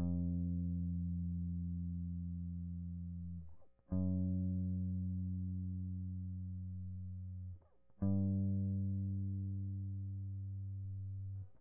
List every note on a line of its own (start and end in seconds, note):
0.00 3.49 F2
3.95 7.57 F#2
8.04 11.47 G2